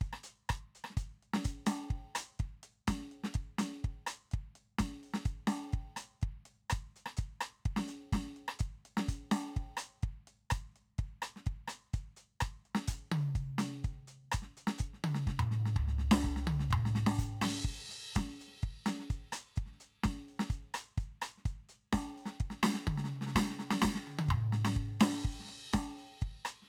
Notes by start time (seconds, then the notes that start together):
0.01 open hi-hat, kick
0.13 cross-stick
0.23 closed hi-hat
0.49 open hi-hat, kick, cross-stick
0.75 closed hi-hat
0.84 cross-stick
0.90 snare
0.97 closed hi-hat, kick
1.22 open hi-hat
1.33 snare
1.44 closed hi-hat, kick
1.66 closed hi-hat, snare
1.90 kick
2.15 closed hi-hat, cross-stick
2.39 kick, snare, closed hi-hat
2.45 snare
2.63 closed hi-hat
2.87 closed hi-hat, kick, snare
2.99 snare
3.11 closed hi-hat
3.24 snare
3.34 kick, closed hi-hat
3.58 closed hi-hat, snare
3.84 kick, closed hi-hat
4.06 closed hi-hat, cross-stick
4.31 kick, closed hi-hat
4.55 closed hi-hat
4.78 closed hi-hat, kick, snare
5.03 open hi-hat
5.14 snare
5.25 closed hi-hat, kick
5.47 closed hi-hat, snare
5.69 snare, closed hi-hat
5.73 kick
5.96 closed hi-hat, cross-stick
6.21 kick, closed hi-hat
6.45 closed hi-hat
6.70 closed hi-hat, kick, cross-stick
6.96 closed hi-hat
7.06 cross-stick
7.17 closed hi-hat, kick
7.41 closed hi-hat, cross-stick
7.65 kick, closed hi-hat
7.76 snare
7.87 open hi-hat
8.12 closed hi-hat, kick, snare
8.36 closed hi-hat
8.48 cross-stick
8.59 closed hi-hat, kick
8.85 open hi-hat
8.97 snare
9.08 closed hi-hat, kick
9.31 closed hi-hat, snare
9.56 kick, closed hi-hat
9.77 closed hi-hat, cross-stick
10.02 kick, closed hi-hat
10.27 closed hi-hat
10.50 closed hi-hat, kick, cross-stick
10.76 closed hi-hat
10.98 kick, closed hi-hat
11.22 closed hi-hat, cross-stick
11.36 snare
11.46 kick, closed hi-hat
11.68 closed hi-hat, cross-stick
11.93 closed hi-hat, kick
12.16 closed hi-hat
12.40 closed hi-hat, kick, cross-stick
12.65 open hi-hat
12.75 snare
12.87 closed hi-hat, kick
13.11 high tom
13.35 kick, closed hi-hat
13.58 closed hi-hat, snare
13.84 closed hi-hat, kick
13.92 snare
14.07 closed hi-hat
14.32 closed hi-hat, kick, cross-stick
14.42 snare
14.57 closed hi-hat
14.67 snare
14.78 open hi-hat, kick
14.93 snare
15.04 high tom
15.14 snare
15.27 kick, snare
15.39 mid tom
15.51 snare
15.65 snare
15.76 kick, floor tom
15.87 snare
15.98 snare
16.11 snare
16.22 kick, snare, hi-hat pedal
16.36 snare
16.47 high tom
16.59 snare
16.70 kick, mid tom
16.85 snare
16.95 snare
17.06 snare
17.18 closed hi-hat, kick
17.41 snare, crash
17.64 kick, closed hi-hat
17.69 snare
17.88 closed hi-hat, snare
17.93 snare
18.15 closed hi-hat, kick, snare
18.21 kick
18.41 closed hi-hat
18.48 snare
18.52 snare
18.55 snare
18.62 kick, closed hi-hat
18.86 closed hi-hat, snare
18.99 snare
19.10 closed hi-hat, kick
19.32 closed hi-hat, cross-stick
19.56 closed hi-hat, kick
19.66 snare
19.71 snare
19.80 closed hi-hat
20.03 closed hi-hat, kick, snare
20.28 open hi-hat
20.39 snare
20.50 closed hi-hat, kick
20.74 open hi-hat, cross-stick
20.97 closed hi-hat, kick
21.21 open hi-hat, cross-stick
21.37 snare
21.45 closed hi-hat, kick, snare
21.50 snare
21.52 snare
21.54 snare
21.69 closed hi-hat
21.92 open hi-hat, kick, snare
22.18 open hi-hat
22.25 snare
22.40 kick, closed hi-hat
22.50 snare
22.63 snare
22.74 snare
22.87 kick, high tom
22.97 snare
23.04 snare
23.08 high tom
23.16 high tom
23.21 snare
23.26 snare
23.31 kick, snare
23.36 snare
23.45 snare
23.50 snare
23.59 snare
23.70 snare
23.82 kick, snare, hi-hat pedal
23.95 snare
24.07 high tom
24.19 high tom
24.28 kick, mid tom
24.52 snare
24.65 snare
24.74 kick, hi-hat pedal
25.00 snare, crash
25.12 snare
25.24 closed hi-hat, kick
25.40 snare
25.45 snare
25.47 snare, closed hi-hat
25.73 closed hi-hat, kick, snare
25.98 open hi-hat
26.21 kick, closed hi-hat
26.45 closed hi-hat, cross-stick
26.62 snare